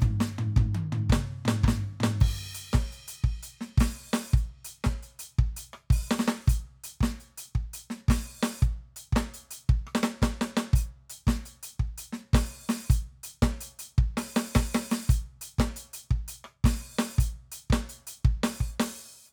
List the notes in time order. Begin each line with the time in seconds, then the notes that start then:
0.01 kick, floor tom, hi-hat pedal
0.21 snare
0.39 floor tom
0.56 kick, floor tom
0.75 high tom
0.92 floor tom
1.10 kick, snare, hi-hat pedal, mid tom
1.45 snare, floor tom
1.64 kick, hi-hat pedal, floor tom
1.68 snare
2.00 snare, floor tom
2.21 kick, hi-hat pedal, crash
2.55 closed hi-hat
2.73 kick, snare
2.92 closed hi-hat
3.08 closed hi-hat
3.24 kick
3.43 closed hi-hat
3.61 snare
3.78 open hi-hat, kick, snare
4.13 open hi-hat, snare
4.31 kick, hi-hat pedal
4.37 closed hi-hat
4.65 closed hi-hat
4.84 kick, snare
5.03 closed hi-hat
5.19 closed hi-hat
5.39 kick
5.57 closed hi-hat
5.73 cross-stick
5.90 open hi-hat, kick
6.11 snare
6.19 snare
6.28 snare
6.47 closed hi-hat, kick, hi-hat pedal
6.84 closed hi-hat
7.01 kick, snare
7.20 closed hi-hat
7.38 closed hi-hat
7.55 kick
7.74 closed hi-hat
7.90 snare
8.08 open hi-hat, kick, snare
8.43 open hi-hat, snare
8.62 kick, hi-hat pedal
8.96 closed hi-hat
9.13 kick, cross-stick, snare
9.34 closed hi-hat
9.51 closed hi-hat
9.69 kick
9.87 cross-stick
9.95 snare
10.03 snare
10.22 kick, snare
10.41 snare
10.57 snare
10.73 open hi-hat, kick
11.10 closed hi-hat
11.27 kick, snare
11.46 closed hi-hat
11.63 closed hi-hat
11.80 kick
11.98 closed hi-hat
12.13 snare
12.33 open hi-hat, kick, snare
12.69 open hi-hat, snare
12.87 closed hi-hat, kick, hi-hat pedal
13.23 closed hi-hat
13.42 kick, snare
13.61 closed hi-hat
13.79 closed hi-hat
13.98 kick
14.17 open hi-hat, snare
14.36 open hi-hat, snare
14.55 open hi-hat, kick, snare
14.74 open hi-hat, snare
14.91 open hi-hat, snare
15.08 closed hi-hat, kick, hi-hat pedal
15.41 closed hi-hat
15.59 kick, snare
15.76 closed hi-hat
15.93 closed hi-hat
16.11 kick
16.28 closed hi-hat
16.44 cross-stick
16.64 open hi-hat, kick, snare
16.99 open hi-hat, snare
17.15 kick, hi-hat pedal
17.20 closed hi-hat
17.52 closed hi-hat
17.70 kick, snare
17.89 closed hi-hat
18.07 closed hi-hat
18.25 kick
18.44 open hi-hat, snare
18.60 kick
18.80 open hi-hat, snare
19.25 hi-hat pedal